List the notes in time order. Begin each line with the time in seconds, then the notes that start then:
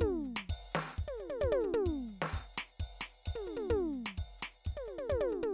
0.01 kick, mid tom
0.08 kick
0.24 hi-hat pedal
0.37 snare
0.50 kick, ride bell
0.72 snare, hi-hat pedal
0.99 kick, ride
1.04 kick, high tom
1.17 hi-hat pedal, high tom
1.30 high tom
1.41 kick, high tom
1.52 high tom
1.61 hi-hat pedal, mid tom
1.74 mid tom
1.86 kick, ride bell
2.08 hi-hat pedal
2.22 snare
2.33 kick, ride bell
2.39 kick
2.54 hi-hat pedal
2.58 snare
2.80 kick, ride
2.87 kick
3.00 snare, hi-hat pedal
3.26 kick, ride
3.35 mid tom
3.46 hi-hat pedal, mid tom
3.57 mid tom
3.70 kick, mid tom
3.76 kick
3.93 hi-hat pedal
4.06 snare
4.18 kick, ride bell
4.39 hi-hat pedal
4.43 snare
4.65 kick, ride
4.72 kick
4.77 high tom
4.86 hi-hat pedal, high tom
4.98 high tom
5.10 kick, high tom
5.21 high tom
5.29 hi-hat pedal, mid tom
5.43 mid tom